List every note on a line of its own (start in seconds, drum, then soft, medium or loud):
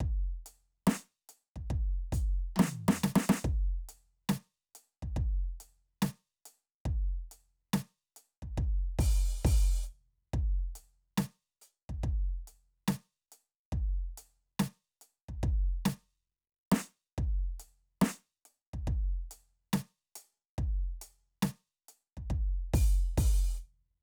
0.01 kick medium
0.01 crash soft
0.47 closed hi-hat medium
0.88 snare loud
1.30 closed hi-hat medium
1.56 kick soft
1.71 kick medium
1.71 crash soft
1.71 ride soft
2.13 closed hi-hat medium
2.13 kick medium
2.57 snare loud
2.57 high tom loud
2.89 snare loud
2.89 hi-hat pedal soft
3.04 snare loud
3.16 snare loud
3.30 snare loud
3.45 kick loud
3.45 snare soft
3.89 closed hi-hat medium
4.30 snare loud
4.76 closed hi-hat medium
5.03 kick soft
5.17 kick medium
5.17 crash soft
5.17 ride soft
5.61 closed hi-hat medium
6.03 snare loud
6.46 closed hi-hat medium
6.86 kick medium
6.86 snare soft
6.86 crash soft
6.86 ride soft
7.32 closed hi-hat medium
7.74 snare loud
8.17 closed hi-hat medium
8.43 kick soft
8.58 kick medium
8.99 open hi-hat loud
8.99 kick loud
9.41 kick soft
9.45 open hi-hat loud
9.45 kick loud
9.45 snare soft
9.84 hi-hat pedal soft
10.34 kick medium
10.76 closed hi-hat medium
11.18 snare loud
11.62 closed hi-hat medium
11.90 kick soft
12.04 kick medium
12.04 snare soft
12.04 crash soft
12.48 closed hi-hat medium
12.88 snare loud
13.33 closed hi-hat medium
13.73 kick medium
14.18 closed hi-hat medium
14.60 snare loud
15.02 closed hi-hat medium
15.29 kick soft
15.44 kick medium
15.44 snare soft
15.44 crash soft
15.44 ride soft
15.86 snare loud
16.72 snare loud
17.19 kick medium
17.19 snare soft
17.60 closed hi-hat medium
18.02 snare loud
18.46 closed hi-hat soft
18.74 kick soft
18.88 kick medium
18.88 crash soft
18.88 ride soft
19.32 closed hi-hat medium
19.74 snare loud
20.16 closed hi-hat loud
20.59 kick medium
20.59 crash soft
20.59 ride soft
21.02 closed hi-hat medium
21.43 snare loud
21.89 closed hi-hat medium
22.18 kick soft
22.31 kick medium
22.31 crash soft
22.31 ride soft
22.74 open hi-hat loud
22.74 kick loud
23.18 open hi-hat loud
23.18 kick loud
23.55 hi-hat pedal soft